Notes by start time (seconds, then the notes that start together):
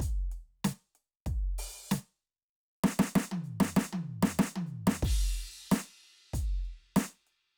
0.01 closed hi-hat, kick
0.33 closed hi-hat
0.66 closed hi-hat, snare
0.96 closed hi-hat
1.27 kick, closed hi-hat
1.59 open hi-hat
1.93 closed hi-hat, snare, hi-hat pedal
2.85 snare
3.00 snare
3.15 snare, hi-hat pedal
3.33 high tom
3.45 hi-hat pedal
3.61 snare
3.76 snare, hi-hat pedal
3.94 high tom
4.24 snare
4.39 snare, hi-hat pedal
4.57 high tom
4.68 hi-hat pedal
4.88 snare
5.04 kick, crash
5.73 closed hi-hat, snare
6.05 closed hi-hat
6.35 closed hi-hat, kick
6.66 closed hi-hat
6.97 closed hi-hat, snare
7.28 closed hi-hat